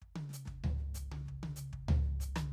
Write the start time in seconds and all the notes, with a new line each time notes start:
0.01 kick
0.15 high tom
0.29 snare, hi-hat pedal
0.45 kick, snare
0.64 floor tom
0.78 snare
0.94 kick, snare, hi-hat pedal
1.11 high tom
1.25 kick, snare
1.43 high tom
1.56 snare, hi-hat pedal
1.72 kick, snare
1.88 floor tom
2.04 snare
2.19 kick, snare, hi-hat pedal
2.36 cross-stick, high tom